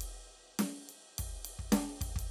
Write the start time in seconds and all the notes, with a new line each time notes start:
0.01 ride
0.59 snare, ride
0.89 ride
1.18 kick, ride
1.45 ride
1.59 kick
1.72 snare, ride
2.01 kick, ride
2.16 kick, ride